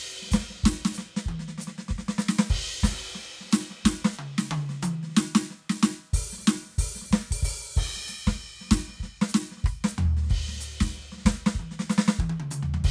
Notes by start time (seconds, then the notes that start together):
0.23 snare
0.27 snare
0.30 kick, snare, hi-hat pedal
0.33 snare
0.51 snare
0.55 snare
0.59 snare
0.64 kick, snare
0.85 snare
0.94 hi-hat pedal
0.99 snare
1.17 snare
1.26 kick, high tom
1.40 snare
1.49 snare
1.58 snare, hi-hat pedal
1.68 snare
1.79 snare
1.89 kick, snare
1.99 snare
2.19 snare, hi-hat pedal
2.29 snare
2.39 snare
2.50 kick, ride
2.84 kick, snare, hi-hat pedal, crash
3.15 snare
3.41 snare
3.46 snare
3.50 snare, hi-hat pedal
3.53 snare
3.71 snare
3.76 snare
3.79 snare
3.83 kick, snare
3.86 snare
4.05 snare
4.12 hi-hat pedal
4.19 mid tom
4.39 snare
4.51 mid tom
4.70 snare
4.73 snare
4.83 hi-hat pedal, high tom
5.03 snare
5.08 snare
5.13 snare
5.17 snare
5.35 snare
5.51 snare
5.70 snare
5.83 snare
6.14 open hi-hat, kick
6.33 snare
6.39 snare
6.43 snare
6.48 snare
6.63 snare
6.67 snare
6.70 snare
6.72 snare
6.79 open hi-hat, kick
6.96 snare
7.02 snare
7.07 snare
7.12 kick, snare
7.31 kick, open hi-hat
7.43 open hi-hat, kick
7.77 kick, crash
7.97 snare
8.02 snare
8.06 snare, hi-hat pedal
8.09 snare
8.27 kick, snare
8.61 snare
8.66 snare
8.69 snare
8.72 kick, snare, hi-hat pedal
8.89 snare
8.93 snare
8.96 snare
9.01 kick, snare
9.22 snare
9.29 hi-hat pedal
9.35 snare
9.52 snare
9.58 snare
9.63 kick, cross-stick, snare
9.85 snare, hi-hat pedal
9.99 floor tom
10.04 kick
10.17 snare
10.23 snare
10.27 snare, ride
10.31 kick, snare
10.49 snare
10.53 snare
10.57 snare, hi-hat pedal, crash
10.81 kick, snare
10.96 snare
11.12 snare
11.18 snare
11.22 kick, snare
11.26 snare, hi-hat pedal
11.47 kick, snare
11.56 kick
11.60 high tom
11.72 snare
11.80 snare
11.90 snare, hi-hat pedal
11.99 snare
12.08 snare
12.19 kick, high tom
12.30 high tom
12.40 mid tom
12.51 hi-hat pedal, mid tom
12.63 floor tom
12.74 floor tom
12.85 kick, ride